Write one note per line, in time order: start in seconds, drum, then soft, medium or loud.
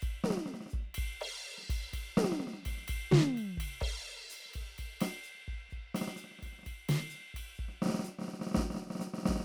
0.01 kick soft
0.01 hi-hat pedal medium
0.01 ride medium
0.25 snare medium
0.25 mid tom medium
0.31 snare medium
0.38 snare soft
0.47 snare soft
0.47 mid tom soft
0.54 snare soft
0.61 snare soft
0.67 snare soft
0.67 hi-hat pedal medium
0.74 kick soft
0.74 snare soft
0.81 snare soft
0.83 snare soft
0.95 kick soft
0.95 ride medium
1.21 crash medium
1.59 snare soft
1.63 snare soft
1.70 kick soft
1.70 ride medium
1.76 kick soft
1.93 kick soft
1.93 snare soft
1.93 ride medium
2.18 snare medium
2.18 mid tom loud
2.24 snare medium
2.24 mid tom soft
2.32 snare soft
2.39 snare soft
2.39 mid tom soft
2.48 snare soft
2.54 snare soft
2.59 snare soft
2.63 kick soft
2.63 snare soft
2.63 ride medium
2.68 kick soft
2.68 snare soft
2.73 snare soft
2.75 snare soft
2.83 snare soft
2.88 kick soft
2.88 ride medium
2.95 kick soft
3.11 snare loud
3.11 floor tom loud
3.22 snare soft
3.35 snare soft
3.35 ride soft
3.58 kick soft
3.58 ride medium
3.63 kick soft
3.81 kick soft
3.81 crash medium
3.88 kick soft
4.30 hi-hat pedal loud
4.30 ride medium
4.46 snare soft
4.54 kick soft
4.54 ride medium
4.61 kick soft
4.77 kick soft
4.77 hi-hat pedal soft
4.77 ride medium
4.85 kick soft
5.01 snare medium
5.01 ride medium
5.24 hi-hat pedal medium
5.35 snare soft
5.47 kick soft
5.47 ride soft
5.54 kick soft
5.69 kick soft
5.69 snare soft
5.69 hi-hat pedal soft
5.69 ride soft
5.78 kick soft
5.95 snare medium
5.95 ride medium
6.02 snare medium
6.08 snare soft
6.17 snare soft
6.17 hi-hat pedal medium
6.17 ride soft
6.25 snare soft
6.32 snare soft
6.39 kick soft
6.39 snare soft
6.39 ride soft
6.46 kick soft
6.46 snare soft
6.53 snare soft
6.59 snare soft
6.64 kick soft
6.64 snare soft
6.64 hi-hat pedal soft
6.64 ride soft
6.72 kick soft
6.89 snare medium
6.89 ride medium
7.11 hi-hat pedal medium
7.15 snare soft
7.21 snare soft
7.35 kick soft
7.35 ride medium
7.40 kick soft
7.56 kick soft
7.56 hi-hat pedal soft
7.65 kick soft
7.69 snare soft
7.83 snare medium
7.86 snare medium
7.89 snare soft
7.89 snare medium
7.95 snare medium
8.00 snare soft
8.05 snare soft
8.05 hi-hat pedal medium
8.09 snare soft
8.19 snare soft
8.22 snare soft
8.25 snare soft
8.29 snare soft
8.34 snare soft
8.40 snare soft
8.42 snare soft
8.47 snare soft
8.52 snare soft
8.52 hi-hat pedal soft
8.55 kick soft
8.55 snare medium
8.60 kick soft
8.60 snare medium
8.66 snare soft
8.71 snare soft
8.75 snare soft
8.77 snare soft
8.83 snare soft
8.88 snare soft
8.91 snare soft
8.96 snare soft
9.00 snare soft
9.00 hi-hat pedal medium
9.02 snare soft
9.08 snare soft
9.14 snare soft
9.19 snare soft
9.24 snare soft
9.26 kick soft
9.26 snare medium
9.31 kick soft
9.31 snare medium
9.36 snare soft
9.41 snare soft